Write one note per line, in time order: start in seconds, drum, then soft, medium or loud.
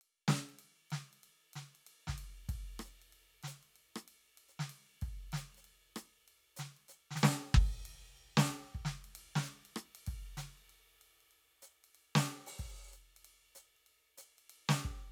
0.01 ride soft
0.28 snare loud
0.28 ride soft
0.49 ride soft
0.59 ride soft
0.91 snare medium
0.91 ride soft
1.13 ride soft
1.23 ride soft
1.53 snare soft
1.53 ride soft
1.75 ride soft
1.87 ride soft
2.07 kick medium
2.07 snare medium
2.18 ride medium
2.49 kick medium
2.49 ride medium
2.79 cross-stick medium
2.79 ride soft
2.85 hi-hat pedal soft
3.02 ride soft
3.13 ride soft
3.43 snare medium
3.43 ride soft
3.47 hi-hat pedal medium
3.63 ride soft
3.76 ride soft
3.96 cross-stick medium
4.08 ride soft
4.37 ride soft
4.48 hi-hat pedal soft
4.59 snare medium
4.69 ride soft
5.01 kick medium
5.01 ride soft
5.32 snare medium
5.32 ride soft
5.37 hi-hat pedal soft
5.55 hi-hat pedal soft
5.55 ride soft
5.64 ride soft
5.96 cross-stick medium
5.96 hi-hat pedal soft
5.96 ride soft
6.28 ride soft
6.56 snare medium
6.56 hi-hat pedal medium
6.56 ride soft
6.77 ride soft
6.88 hi-hat pedal soft
6.88 ride soft
7.11 snare medium
7.15 snare medium
7.15 hi-hat pedal soft
7.23 snare loud
7.54 kick loud
7.54 crash soft
7.85 ride medium
8.06 ride soft
8.17 ride soft
8.37 snare loud
8.51 ride soft
8.75 kick medium
8.85 snare medium
9.04 ride soft
9.15 ride medium
9.35 snare medium
9.43 hi-hat pedal soft
9.47 ride soft
9.65 ride soft
9.76 cross-stick medium
9.95 ride medium
10.07 kick medium
10.07 ride medium
10.37 snare medium
10.37 hi-hat pedal soft
10.37 ride soft
10.57 ride soft
10.69 ride soft
11.01 ride soft
11.21 ride soft
11.31 ride soft
11.62 hi-hat pedal soft
11.62 ride soft
11.84 ride soft
11.95 ride soft
12.15 snare loud
12.19 hi-hat pedal soft
12.28 ride soft
12.46 open hi-hat medium
12.59 kick medium
12.59 ride soft
12.93 hi-hat pedal soft
12.93 ride soft
13.16 ride soft
13.25 ride soft
13.55 hi-hat pedal soft
13.55 ride soft
13.76 ride soft
13.86 ride soft
14.18 hi-hat pedal soft
14.18 ride soft
14.38 ride soft
14.50 ride soft
14.68 snare medium
14.68 hi-hat pedal soft
14.80 ride bell soft
14.85 kick medium